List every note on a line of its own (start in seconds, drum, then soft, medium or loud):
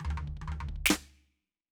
0.00 closed hi-hat soft
0.00 high tom medium
0.05 floor tom loud
0.10 high tom medium
0.17 floor tom medium
0.27 kick soft
0.37 kick soft
0.41 high tom medium
0.48 floor tom medium
0.52 high tom medium
0.60 floor tom medium
0.68 kick soft
0.76 kick soft
0.86 snare loud
0.90 snare loud